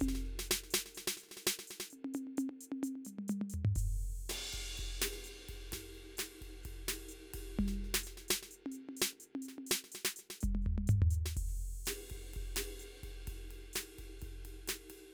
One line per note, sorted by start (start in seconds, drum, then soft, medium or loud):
0.01 kick soft
0.01 hi-hat pedal medium
0.01 high tom loud
0.09 snare soft
0.16 snare soft
0.40 snare medium
0.45 hi-hat pedal soft
0.52 snare loud
0.64 snare soft
0.71 snare loud
0.71 hi-hat pedal medium
0.87 snare soft
0.95 snare medium
0.95 hi-hat pedal medium
1.08 snare loud
1.18 snare soft
1.18 hi-hat pedal medium
1.24 snare soft
1.29 snare soft
1.32 snare soft
1.38 snare soft
1.43 hi-hat pedal soft
1.48 snare loud
1.60 snare soft
1.68 snare soft
1.68 hi-hat pedal medium
1.81 snare medium
1.91 hi-hat pedal medium
1.91 high tom soft
2.05 high tom medium
2.15 hi-hat pedal medium
2.15 high tom loud
2.28 high tom soft
2.38 hi-hat pedal medium
2.38 high tom loud
2.50 high tom medium
2.61 hi-hat pedal medium
2.73 high tom loud
2.84 hi-hat pedal medium
2.84 high tom loud
2.96 high tom soft
3.06 hi-hat pedal medium
3.06 mid tom medium
3.19 mid tom medium
3.29 hi-hat pedal medium
3.29 mid tom loud
3.42 mid tom loud
3.50 hi-hat pedal medium
3.55 floor tom medium
3.66 floor tom loud
3.76 kick medium
3.76 hi-hat pedal medium
3.76 crash medium
4.30 snare medium
4.30 hi-hat pedal medium
4.30 ride medium
4.54 kick soft
4.54 snare soft
4.54 ride medium
4.60 kick soft
4.64 snare soft
4.67 snare soft
4.70 snare soft
4.74 snare soft
4.74 hi-hat pedal soft
4.78 kick soft
4.78 ride soft
4.85 kick soft
5.02 snare medium
5.02 ride loud
5.14 snare soft
5.25 snare soft
5.25 hi-hat pedal medium
5.25 ride soft
5.35 snare soft
5.38 snare soft
5.49 kick soft
5.49 ride medium
5.55 kick soft
5.73 kick soft
5.73 snare medium
5.73 hi-hat pedal soft
5.73 ride medium
5.79 kick soft
5.96 ride soft
6.18 snare medium
6.18 hi-hat pedal medium
6.18 ride medium
6.42 kick soft
6.42 ride soft
6.64 kick soft
6.64 hi-hat pedal soft
6.64 ride medium
6.89 snare medium
6.89 ride medium
7.00 snare soft
7.09 hi-hat pedal medium
7.19 snare soft
7.34 kick soft
7.34 ride medium
7.40 kick soft
7.45 snare soft
7.60 kick soft
7.60 mid tom loud
7.66 kick soft
7.66 snare soft
7.85 snare soft
7.95 snare loud
8.04 snare soft
8.04 hi-hat pedal medium
8.18 snare soft
8.29 snare loud
8.29 hi-hat pedal medium
8.43 snare soft
8.52 hi-hat pedal medium
8.67 high tom medium
8.72 hi-hat pedal medium
8.90 high tom medium
8.97 hi-hat pedal medium
9.02 snare loud
9.14 high tom soft
9.21 hi-hat pedal medium
9.36 high tom medium
9.43 hi-hat pedal medium
9.49 snare soft
9.59 high tom medium
9.67 hi-hat pedal medium
9.72 snare loud
9.85 snare soft
9.93 snare medium
9.93 hi-hat pedal medium
10.06 snare medium
10.17 snare soft
10.17 hi-hat pedal loud
10.31 snare medium
10.41 kick medium
10.41 hi-hat pedal medium
10.41 mid tom medium
10.56 mid tom medium
10.63 kick soft
10.63 hi-hat pedal soft
10.67 floor tom medium
10.79 mid tom medium
10.88 hi-hat pedal medium
10.88 floor tom loud
11.03 floor tom loud
11.11 hi-hat pedal medium
11.26 snare medium
11.35 kick soft
11.35 hi-hat pedal soft
11.35 crash medium
11.44 kick soft
11.49 snare soft
11.86 snare medium
11.86 hi-hat pedal medium
11.86 ride loud
12.11 kick soft
12.11 ride soft
12.15 kick soft
12.15 snare soft
12.20 snare soft
12.34 kick soft
12.34 hi-hat pedal soft
12.34 ride soft
12.42 kick soft
12.57 snare medium
12.57 ride loud
12.80 hi-hat pedal medium
12.80 ride soft
13.04 kick soft
13.04 ride soft
13.09 kick soft
13.27 kick soft
13.27 hi-hat pedal soft
13.27 ride medium
13.34 kick soft
13.51 ride soft
13.74 snare medium
13.74 hi-hat pedal medium
13.74 ride medium
13.99 kick soft
13.99 snare soft
13.99 ride soft
14.20 kick soft
14.20 hi-hat pedal soft
14.20 ride soft
14.46 ride soft
14.68 snare medium
14.68 hi-hat pedal medium
14.68 ride medium
14.91 ride medium
14.98 snare soft